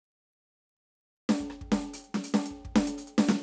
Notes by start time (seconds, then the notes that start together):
1.29 snare
1.40 kick
1.50 cross-stick
1.61 kick
1.72 snare
1.87 closed hi-hat
1.94 closed hi-hat
2.04 closed hi-hat
2.14 snare
2.24 closed hi-hat
2.34 snare
2.46 closed hi-hat
2.51 kick
2.65 kick
2.76 snare
2.87 closed hi-hat
2.98 closed hi-hat
3.07 closed hi-hat
3.18 snare
3.29 snare